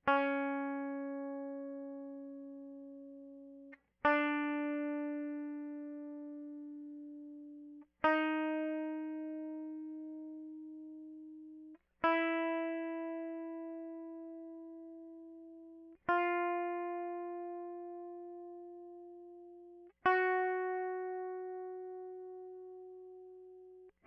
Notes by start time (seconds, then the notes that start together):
0.08 C#4
4.06 D4
8.05 D#4
12.05 E4
16.10 F4
20.06 F#4